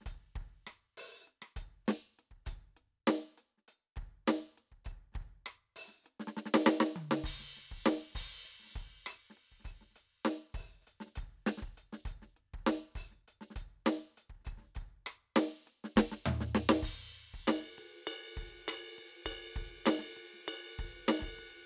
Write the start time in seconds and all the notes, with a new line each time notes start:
0.01 snare, hi-hat pedal
0.06 closed hi-hat, kick
0.14 kick
0.35 kick, closed hi-hat
0.42 kick
0.67 closed hi-hat, cross-stick
0.97 open hi-hat
1.23 hi-hat pedal
1.27 closed hi-hat
1.42 cross-stick
1.56 closed hi-hat, kick
1.62 kick
1.85 closed hi-hat, snare, hi-hat pedal
2.19 closed hi-hat
2.31 kick
2.45 closed hi-hat, kick, hi-hat pedal
2.77 closed hi-hat
3.07 closed hi-hat, snare
3.38 closed hi-hat
3.57 snare
3.68 closed hi-hat
3.96 kick, closed hi-hat
4.26 closed hi-hat, snare, hi-hat pedal
4.57 closed hi-hat
4.71 kick
4.84 open hi-hat, kick, hi-hat pedal
4.96 kick
5.12 kick, snare, closed hi-hat
5.21 kick
5.46 closed hi-hat, cross-stick
5.76 open hi-hat
5.88 snare
6.04 closed hi-hat, hi-hat pedal
6.20 snare
6.27 snare
6.37 snare
6.46 snare
6.54 snare
6.66 snare, hi-hat pedal
6.80 snare
6.95 hi-hat pedal, high tom
7.11 snare
7.24 kick, crash
7.33 kick
7.39 snare
7.55 closed hi-hat, snare
7.71 kick
7.86 open hi-hat, snare, hi-hat pedal
8.12 kick, snare, crash
8.44 hi-hat pedal
8.59 snare
8.63 snare
8.65 snare
8.71 snare
8.75 closed hi-hat, kick
8.81 kick
9.06 open hi-hat, cross-stick
9.30 snare
9.37 closed hi-hat
9.51 kick
9.60 snare
9.64 open hi-hat, kick
9.81 snare
9.90 snare
9.92 closed hi-hat, snare
10.24 closed hi-hat, snare, hi-hat pedal
10.54 open hi-hat, kick
10.60 kick
10.81 hi-hat pedal
10.87 closed hi-hat
11.00 snare
11.06 snare
11.15 closed hi-hat, kick
11.23 kick
11.46 closed hi-hat, snare
11.57 snare
11.62 kick
11.72 hi-hat pedal
11.77 closed hi-hat
11.93 snare
12.05 closed hi-hat, kick
12.11 kick
12.22 snare
12.36 closed hi-hat
12.53 kick
12.59 kick
12.66 closed hi-hat, snare, hi-hat pedal
12.95 open hi-hat, kick
13.11 snare
13.28 closed hi-hat
13.41 snare
13.50 snare
13.56 closed hi-hat, kick
13.85 closed hi-hat, snare, hi-hat pedal
14.17 closed hi-hat
14.29 kick
14.40 snare
14.45 open hi-hat, kick
14.54 kick, snare
14.57 kick, snare
14.63 snare
14.75 closed hi-hat, kick
14.82 kick
15.06 closed hi-hat, cross-stick
15.36 closed hi-hat, snare
15.66 closed hi-hat, hi-hat pedal
15.84 snare
15.96 kick, snare
16.02 kick
16.12 snare
16.25 hi-hat pedal, floor tom
16.40 snare
16.54 snare, hi-hat pedal
16.69 snare
16.82 kick, crash
16.93 kick
17.34 kick
17.47 snare, hi-hat pedal, ride bell
17.78 ride
18.07 hi-hat pedal, ride bell
18.37 kick, ride
18.43 kick
18.67 cross-stick, hi-hat pedal, ride bell
18.98 ride
19.25 kick, hi-hat pedal, ride bell
19.56 kick, ride
19.84 snare, hi-hat pedal, ride bell
19.98 snare
20.16 ride
20.33 snare
20.39 snare
20.46 hi-hat pedal, ride bell
20.79 kick, ride
20.88 kick
21.07 snare, hi-hat pedal, ride bell
21.19 kick, snare
21.39 ride